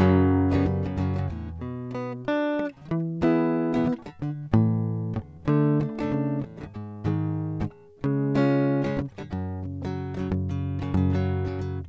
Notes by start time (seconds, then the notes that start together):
0.00 F#2 C#3 F#3
0.52 C#3 F#3 G3 B3
0.56 F#2
0.68 F#2 C#3
0.85 F#2 C#3
0.99 F#2 C#3 F#3
1.16 C#3 F#3
1.20 F#2
1.30 E2 A2 D3
1.64 B2
1.97 B3
2.29 D4
2.93 E3
3.23 E3 B3 E4 G#4
3.75 B3 E4
4.24 D3
4.55 A2 E3
5.49 D3 A3
5.82 A3 D4
6.00 C#3 A3 D4
6.14 C#3 A3
6.44 A3
6.76 G#2
7.06 G#2 D#3
8.05 C#3 G#3
8.37 G#3 C#4 F4
8.84 G#3 C#4
8.88 C#3
8.99 C#3
9.20 D3
9.33 F#2
9.66 C#3
9.86 C#3 F#3
10.16 C#3 F#3
10.33 F#2 C#3
10.51 C#3
10.81 F#2 C#3
10.96 F#2 C#3
11.17 C#3 F#3
11.47 F#2 C#3
11.61 F#2 C#3